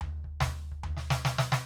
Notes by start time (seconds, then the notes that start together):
0.01 floor tom
0.24 kick
0.40 snare, floor tom
0.49 snare
0.72 kick
0.83 floor tom
0.97 snare
1.10 snare
1.25 snare
1.38 snare
1.52 snare